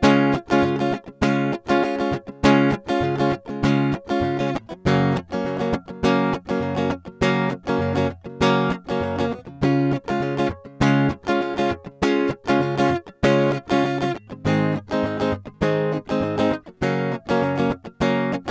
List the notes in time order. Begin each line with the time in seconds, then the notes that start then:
0.05 C#3 G#3 C#4 F4
0.53 C#3 G#3 C#4 F4
0.64 C#3 G#3 C#4 F4
0.82 G#3 C#4 F4
1.24 C#3 G#3 C#4 F4
1.72 G#3 C#4 F4
1.85 C#4 F4
2.02 G#3 C#4 F4
2.46 C#3 G#3 C#4 F4
2.91 G#3 C#4 F4
3.04 C#3 G#3 C#4 F4
3.22 C#3 G#3 C#4 F4
3.65 C#3 G#3 C#4 F4
4.12 G#3 C#4 F4
4.24 C#3 G#3 C#4
4.40 C#3 G#3 C#4 F4
4.87 F#2 C#3 F#3 A#3 C#4
5.33 F#3 A#3 C#4
5.47 C#3 F#3 A#3
5.63 F#3 A#3 C#4
6.05 C#3 F#3 A#3 C#4
6.52 C#3 F#3 A#3 C#4
6.62 F#2 C#3 F#3 A#3
6.79 C#3 F#3 A#3 C#4
7.24 C#3 F#3 A#3 C#4
7.70 C#3 F#3 A#3 C#4
7.81 F#2 C#3 F#3 A#3
7.99 C#3 F#3 A#3 C#4
8.28 C#3 F#3
8.44 A#3 C#4
8.92 C#3 F#3 A#3 C#4
9.03 F#2 C#3 F#3 A#3
9.22 C#3 F#3 A#3 C#4
9.64 C#3 C#4 F4
10.11 C#3 G#3 C#4 F4
10.23 C#3 G#3 C#4 F4
10.40 C#3 G#3 C#4 F4
10.69 C#3
10.83 G#3 C#4 F4
11.30 C#3 G#3 C#4 F4
11.43 G#3 C#4 F4
11.60 C#3 G#3 C#4 F4
12.05 G#3 C#4 F4
12.51 C#3 G#3 C#4 F4
12.63 C#3 G#3 C#4 F4
12.81 C#3 G#3 C#4 F4
13.25 C#3 G#3 C#4 F4
13.73 C#3 C#4 F4
13.84 C#3 C#4 F4
14.04 C#3 C#4 F4
14.47 G#2 D#3 G#3 C4 D#4
14.95 D#3 G#3 C4 D#4
15.06 G#2 D#3 G#3 C4 D#4
15.23 D#3 G#3 C4 D#4
15.63 D#3 G#3 C4 D#4
16.12 D#3 G#3 C4 D#4
16.23 G#2 D#3 G#3 C4
16.41 D#3 G#3 C4 D#4
16.84 C#3 F#3 A#3 C#4
16.91 F#3
17.32 C#3 F#3 A#3 C#4
17.43 F#2 C#3 F#3 A#3
17.61 F#3 A#3 C#4
18.02 C#3 F#3 A#3 C#4